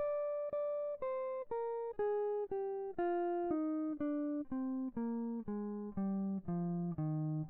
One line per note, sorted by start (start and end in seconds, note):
0.00 0.53 D5
0.53 0.97 D5
1.02 1.45 C5
1.52 1.95 A#4
1.99 2.47 G#4
2.52 2.93 G4
2.99 3.57 F4
3.51 3.99 D#4
4.01 4.44 D4
4.52 4.92 C4
4.97 5.44 A#3
5.49 5.94 G#3
5.98 6.42 G3
6.49 6.95 F3
6.99 7.46 D#3